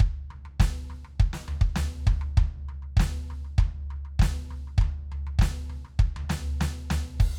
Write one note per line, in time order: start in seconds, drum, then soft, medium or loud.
0.01 kick loud
0.01 floor tom medium
0.31 floor tom medium
0.46 floor tom medium
0.61 kick loud
0.61 snare loud
0.61 floor tom loud
0.91 floor tom medium
1.06 floor tom medium
1.21 kick loud
1.21 floor tom medium
1.34 snare loud
1.49 floor tom loud
1.62 kick loud
1.77 snare loud
1.77 floor tom loud
2.08 kick loud
2.08 floor tom loud
2.22 floor tom medium
2.38 kick loud
2.38 floor tom loud
2.69 floor tom medium
2.83 floor tom soft
2.98 kick loud
2.98 snare loud
2.98 floor tom loud
3.31 floor tom medium
3.46 floor tom soft
3.59 kick loud
3.59 floor tom loud
3.91 floor tom medium
4.06 floor tom soft
4.20 kick loud
4.20 snare loud
4.20 floor tom loud
4.51 floor tom medium
4.68 floor tom soft
4.79 kick loud
4.79 floor tom loud
5.13 floor tom medium
5.28 floor tom medium
5.40 kick loud
5.40 snare loud
5.40 floor tom loud
5.71 floor tom medium
5.86 floor tom medium
6.00 kick loud
6.00 floor tom loud
6.17 floor tom loud
6.30 snare loud
6.30 floor tom loud
6.62 snare loud
6.62 floor tom loud
6.91 snare loud
6.91 floor tom loud
7.21 kick loud
7.21 crash medium